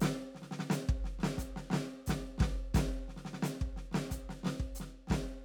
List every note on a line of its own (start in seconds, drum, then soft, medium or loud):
0.01 snare loud
0.01 hi-hat pedal medium
0.04 snare medium
0.35 snare soft
0.42 snare soft
0.51 snare soft
0.59 snare medium
0.70 snare medium
0.70 hi-hat pedal medium
0.89 kick medium
1.04 snare soft
1.19 snare soft
1.23 snare medium
1.37 kick soft
1.37 snare soft
1.37 hi-hat pedal medium
1.56 snare soft
1.70 snare medium
1.73 snare medium
2.06 kick medium
2.06 snare soft
2.06 snare medium
2.06 hi-hat pedal medium
2.38 kick medium
2.38 snare soft
2.41 snare medium
2.74 kick medium
2.74 snare medium
2.74 hi-hat pedal medium
2.76 snare medium
3.08 snare soft
3.16 snare soft
3.25 snare soft
3.33 snare soft
3.43 snare medium
3.43 hi-hat pedal medium
3.61 kick medium
3.76 snare soft
3.92 snare soft
3.95 snare medium
4.10 kick soft
4.10 snare soft
4.10 hi-hat pedal medium
4.29 snare soft
4.44 snare soft
4.46 snare medium
4.60 kick medium
4.75 hi-hat pedal medium
4.80 snare soft
5.08 kick medium
5.08 snare soft
5.11 snare medium